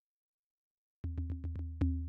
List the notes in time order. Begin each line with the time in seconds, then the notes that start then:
1.04 floor tom, high tom
1.17 floor tom, high tom
1.30 floor tom, high tom
1.44 floor tom, high tom
1.55 floor tom, high tom
1.81 floor tom, high tom